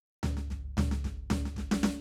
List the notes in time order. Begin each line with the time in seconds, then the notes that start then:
0.23 snare, floor tom
0.37 snare
0.50 kick, snare
0.77 snare, floor tom
0.91 snare
1.04 kick, snare
1.30 snare, floor tom
1.45 snare
1.56 kick, snare
1.71 snare
1.83 snare